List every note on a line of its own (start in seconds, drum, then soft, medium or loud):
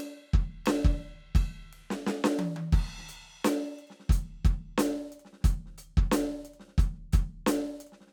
0.01 ride bell medium
0.34 kick loud
0.34 snare soft
0.66 snare loud
0.66 ride bell loud
0.85 kick loud
1.36 kick loud
1.36 ride bell loud
1.73 ride medium
1.91 snare loud
2.07 snare loud
2.07 hi-hat pedal soft
2.25 snare loud
2.39 high tom loud
2.57 high tom loud
2.73 kick loud
2.73 crash loud
2.99 snare soft
3.09 closed hi-hat medium
3.45 open hi-hat loud
3.45 snare loud
3.45 hi-hat pedal soft
3.79 closed hi-hat soft
3.88 snare soft
3.88 closed hi-hat soft
4.00 snare soft
4.09 closed hi-hat medium
4.09 kick loud
4.09 snare soft
4.15 snare soft
4.21 snare soft
4.26 snare soft
4.45 kick loud
4.45 closed hi-hat medium
4.78 closed hi-hat loud
4.78 snare loud
4.99 hi-hat pedal soft
5.12 closed hi-hat medium
5.20 closed hi-hat soft
5.26 snare soft
5.33 snare soft
5.41 closed hi-hat medium
5.41 kick loud
5.41 snare soft
5.49 snare soft
5.66 snare soft
5.73 snare soft
5.78 closed hi-hat medium
5.98 kick loud
6.12 open hi-hat loud
6.12 snare loud
6.27 hi-hat pedal soft
6.45 closed hi-hat medium
6.54 closed hi-hat soft
6.60 snare soft
6.69 snare soft
6.79 closed hi-hat medium
6.79 kick loud
6.87 snare soft
6.94 snare soft
7.13 closed hi-hat medium
7.13 kick loud
7.47 closed hi-hat loud
7.47 snare loud
7.67 hi-hat pedal soft
7.81 closed hi-hat medium
7.87 closed hi-hat soft
7.93 snare soft
8.01 snare soft
8.08 snare soft